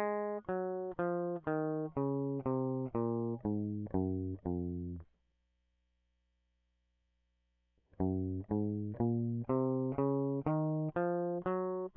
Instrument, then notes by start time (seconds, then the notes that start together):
electric guitar
0.00 G#3
0.50 F#3
1.01 F3
1.49 D#3
1.98 C#3
2.48 C3
2.97 A#2
3.47 G#2
3.97 F#2
4.49 F2
8.03 F#2
8.53 G#2
9.02 A#2
9.51 C3
10.00 C#3
10.48 D#3
10.98 F3
11.47 F#3